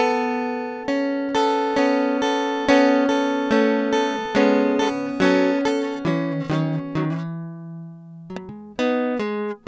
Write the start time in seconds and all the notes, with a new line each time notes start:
0.00 B3 A4
0.90 C#4
1.36 B3 A4
1.78 B3 C#4
2.23 B3 A4
2.70 B3 C#4 A4
3.10 B3 A4
3.52 A3 C#4
3.94 B3 A4
4.36 G#3 B3 C#4
4.81 B3 A4
5.21 F#3 B3 C#4
5.26 A4
5.66 A4
6.06 E3 C#4
6.51 D#3 C#4
6.97 D#3 F#3
7.12 E3
8.31 F#3
8.50 G#3
8.80 B3 D#4
9.21 G#3